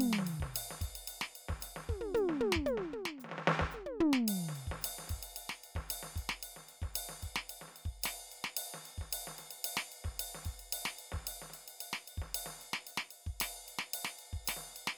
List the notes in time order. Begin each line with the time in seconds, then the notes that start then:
0.01 hi-hat pedal, ride
0.13 snare
0.19 snare
0.27 ride
0.40 kick, snare
0.55 hi-hat pedal, ride bell
0.71 snare
0.81 kick, ride
0.87 kick
0.96 ride
1.08 hi-hat pedal, ride
1.22 snare
1.36 ride
1.49 kick, snare
1.57 kick, hi-hat pedal
1.63 ride bell
1.77 snare
1.89 kick, mid tom
1.95 kick
2.01 mid tom
2.15 hi-hat pedal, mid tom
2.29 snare
2.41 mid tom
2.53 kick, snare
2.66 hi-hat pedal, high tom
2.78 snare
2.93 mid tom
3.06 snare
3.19 snare, hi-hat pedal
3.25 snare
3.30 snare
3.32 snare
3.39 snare
3.48 snare
3.60 kick, snare
3.71 hi-hat pedal, mid tom
3.86 closed hi-hat, high tom
4.00 floor tom
4.13 snare
4.28 hi-hat pedal, ride
4.49 snare
4.56 ride
4.67 kick
4.72 snare
4.78 snare, hi-hat pedal
4.85 ride bell
4.99 snare
5.04 snare
5.08 kick, snare, ride
5.16 kick
5.23 ride
5.36 hi-hat pedal, ride
5.50 snare
5.64 ride
5.76 kick, snare
5.89 hi-hat pedal, ride bell
6.03 snare
6.16 kick, ride
6.29 snare
6.43 hi-hat pedal, ride bell
6.57 snare
6.69 ride
6.82 kick, snare
6.95 hi-hat pedal, ride bell
7.09 snare
7.23 kick, ride
7.36 snare
7.49 hi-hat pedal, ride
7.62 snare
7.69 snare
7.76 ride
7.86 kick
8.02 snare, hi-hat pedal, ride bell
8.32 ride
8.45 snare
8.57 hi-hat pedal, ride bell
8.74 snare
8.86 ride
8.98 kick, snare
9.11 kick, hi-hat pedal, ride bell
9.28 snare
9.39 snare, ride
9.51 ride
9.65 hi-hat pedal, ride bell
9.77 snare
9.92 ride
10.05 kick, snare
10.20 hi-hat pedal, ride
10.35 snare
10.43 kick, snare, ride
10.60 ride
10.73 hi-hat pedal, ride bell
10.86 snare
10.99 ride
11.12 kick, snare
11.27 hi-hat pedal, ride bell
11.42 snare
11.50 snare, ride
11.68 ride
11.81 hi-hat pedal, ride bell
11.93 snare
12.08 ride
12.18 kick
12.22 snare
12.35 hi-hat pedal, ride bell
12.46 snare
12.61 ride
12.74 snare
12.87 hi-hat pedal, ride
12.98 snare
13.11 ride
13.27 kick
13.41 snare, hi-hat pedal, ride bell
13.68 ride
13.79 snare
13.94 hi-hat pedal, ride bell
14.05 snare
14.19 ride
14.33 kick
14.45 snare, hi-hat pedal, ride bell
14.57 snare
14.76 ride
14.88 snare